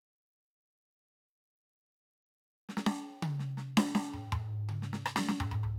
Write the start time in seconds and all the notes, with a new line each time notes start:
2.69 snare
2.77 snare
2.86 snare
3.22 high tom
3.39 snare
3.57 snare
3.77 snare
3.95 snare
4.14 mid tom
4.32 mid tom
4.69 high tom
4.82 snare
4.93 snare
5.06 cross-stick
5.16 snare
5.29 snare
5.40 mid tom
5.51 mid tom
5.63 floor tom